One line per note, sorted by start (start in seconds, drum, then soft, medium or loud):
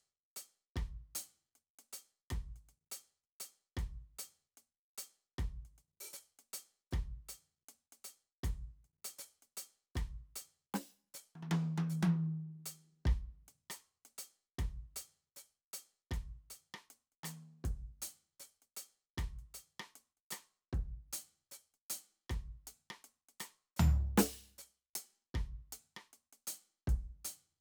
0.37 open hi-hat medium
0.76 kick medium
0.76 cross-stick medium
0.76 closed hi-hat soft
1.16 closed hi-hat loud
1.56 closed hi-hat soft
1.79 closed hi-hat soft
1.93 closed hi-hat medium
2.31 kick medium
2.31 cross-stick medium
2.31 closed hi-hat soft
2.57 closed hi-hat soft
2.69 closed hi-hat soft
2.92 closed hi-hat medium
3.25 closed hi-hat soft
3.41 open hi-hat medium
3.77 kick medium
3.77 cross-stick medium
3.77 closed hi-hat soft
4.19 closed hi-hat medium
4.58 closed hi-hat soft
4.98 closed hi-hat medium
5.39 kick medium
5.39 cross-stick medium
5.39 closed hi-hat soft
5.66 closed hi-hat soft
5.79 closed hi-hat soft
6.01 open hi-hat medium
6.14 hi-hat pedal medium
6.40 closed hi-hat soft
6.54 open hi-hat medium
6.92 kick medium
6.92 cross-stick medium
6.92 closed hi-hat soft
6.92 hi-hat pedal soft
7.29 closed hi-hat medium
7.69 closed hi-hat soft
7.93 closed hi-hat soft
8.05 closed hi-hat medium
8.44 kick medium
8.44 cross-stick medium
8.44 closed hi-hat medium
8.85 closed hi-hat soft
9.05 open hi-hat medium
9.19 hi-hat pedal medium
9.43 closed hi-hat soft
9.58 open hi-hat medium
9.96 kick medium
9.96 cross-stick medium
9.96 closed hi-hat soft
9.96 hi-hat pedal soft
10.36 closed hi-hat medium
10.75 snare medium
10.75 closed hi-hat medium
11.15 hi-hat pedal medium
11.36 high tom soft
11.43 high tom soft
11.52 high tom loud
11.78 high tom medium
11.90 hi-hat pedal soft
12.03 high tom loud
12.66 closed hi-hat medium
13.06 kick medium
13.06 cross-stick medium
13.49 closed hi-hat soft
13.71 closed hi-hat medium
13.71 cross-stick medium
14.06 closed hi-hat soft
14.19 closed hi-hat medium
14.59 kick medium
14.59 cross-stick medium
14.59 closed hi-hat soft
14.97 open hi-hat medium
15.37 closed hi-hat soft
15.37 hi-hat pedal medium
15.74 closed hi-hat medium
16.12 kick medium
16.12 cross-stick medium
16.12 closed hi-hat soft
16.51 closed hi-hat medium
16.75 cross-stick medium
16.91 closed hi-hat soft
17.13 closed hi-hat soft
17.24 closed hi-hat medium
17.24 cross-stick medium
17.24 high tom soft
17.65 kick medium
17.65 closed hi-hat soft
18.03 open hi-hat medium
18.40 hi-hat pedal medium
18.45 closed hi-hat soft
18.63 closed hi-hat soft
18.77 closed hi-hat medium
19.18 kick medium
19.18 cross-stick medium
19.18 closed hi-hat soft
19.39 closed hi-hat soft
19.55 closed hi-hat medium
19.80 cross-stick medium
19.96 closed hi-hat soft
20.18 closed hi-hat soft
20.31 closed hi-hat medium
20.31 cross-stick medium
20.73 kick medium
20.73 closed hi-hat soft
21.13 open hi-hat loud
21.52 closed hi-hat soft
21.52 hi-hat pedal medium
21.75 closed hi-hat soft
21.91 closed hi-hat loud
22.30 kick medium
22.30 cross-stick medium
22.30 closed hi-hat soft
22.68 closed hi-hat medium
22.91 cross-stick medium
23.05 closed hi-hat soft
23.29 closed hi-hat soft
23.41 open hi-hat medium
23.41 cross-stick medium
23.77 floor tom loud
23.77 hi-hat pedal soft
24.18 closed hi-hat loud
24.18 snare loud
24.59 hi-hat pedal medium
24.96 closed hi-hat loud
25.35 kick medium
25.35 cross-stick medium
25.73 closed hi-hat medium
25.97 cross-stick medium
26.14 closed hi-hat soft
26.33 closed hi-hat soft
26.48 closed hi-hat loud
26.88 kick medium
26.88 closed hi-hat soft
27.25 open hi-hat medium